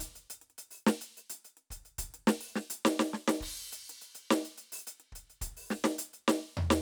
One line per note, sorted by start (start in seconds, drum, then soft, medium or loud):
0.01 closed hi-hat medium
0.01 kick soft
0.16 closed hi-hat soft
0.31 closed hi-hat medium
0.42 closed hi-hat soft
0.51 closed hi-hat soft
0.59 closed hi-hat medium
0.71 open hi-hat medium
0.87 snare loud
1.02 open hi-hat medium
1.18 open hi-hat medium
1.18 hi-hat pedal soft
1.30 closed hi-hat medium
1.45 closed hi-hat soft
1.58 closed hi-hat soft
1.71 closed hi-hat medium
1.71 kick soft
1.86 closed hi-hat soft
1.99 closed hi-hat loud
1.99 kick soft
2.05 kick soft
2.15 closed hi-hat medium
2.28 snare loud
2.41 open hi-hat medium
2.50 hi-hat pedal soft
2.56 snare medium
2.71 closed hi-hat loud
2.86 snare loud
3.00 snare loud
3.14 snare medium
3.28 snare loud
3.35 hi-hat pedal soft
3.41 kick soft
3.41 crash medium
3.73 closed hi-hat medium
3.90 closed hi-hat medium
4.02 closed hi-hat medium
4.15 closed hi-hat medium
4.31 snare loud
4.45 closed hi-hat medium
4.58 closed hi-hat medium
4.73 open hi-hat loud
4.78 hi-hat pedal soft
4.87 open hi-hat soft
4.87 open hi-hat medium
5.00 closed hi-hat soft
5.13 closed hi-hat medium
5.13 kick soft
5.30 closed hi-hat soft
5.42 closed hi-hat loud
5.42 kick soft
5.48 kick soft
5.57 open hi-hat medium
5.63 open hi-hat soft
5.71 snare medium
5.85 snare loud
5.85 hi-hat pedal soft
5.99 closed hi-hat loud
6.14 open hi-hat medium
6.29 snare loud
6.43 closed hi-hat soft
6.58 floor tom loud
6.71 snare loud